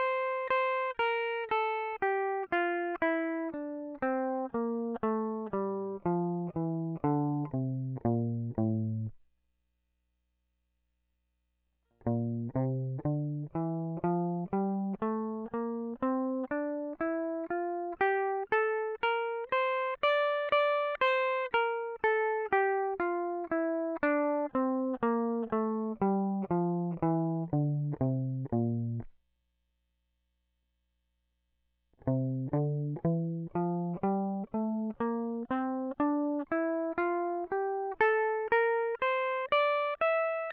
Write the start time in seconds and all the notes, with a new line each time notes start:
0.00 C5
0.51 C5
1.00 A#4
1.52 A4
2.03 G4
2.53 F4
3.02 E4
3.54 D4
4.03 C4
4.55 A#3
5.04 A3
5.54 G3
6.07 F3
6.57 E3
7.07 D3
7.55 C3
8.07 A#2
8.60 A2
12.08 A#2
12.57 C3
13.06 D3
13.57 E3
14.06 F3
14.54 G3
15.03 A3
15.55 A#3
16.03 C4
16.52 D4
17.01 E4
17.51 F4
18.01 G4
18.53 A4
19.04 A#4
19.53 C5
20.04 D5
20.53 D5
21.02 C5
21.55 A#4
22.04 A4
22.53 G4
23.00 F4
23.52 E4
24.04 D4
24.56 C4
25.04 A#3
25.53 A3
26.02 G3
26.52 F3
27.04 E3
27.54 D3
28.03 C3
28.54 A#2
32.09 C3
32.55 D3
33.06 E3
33.57 F3
34.04 G3
34.55 A3
35.01 A#3
35.51 C4
36.01 D4
36.52 E4
36.98 F4
37.52 G4
38.01 A4
38.53 A#4
39.02 C5
39.53 D5
40.02 E5